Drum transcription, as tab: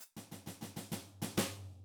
HH |p-----------|
SD |-oooooo-oo--|
FT |-oooooo-oo--|